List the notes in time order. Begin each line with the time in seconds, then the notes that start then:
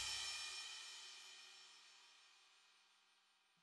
3.57 snare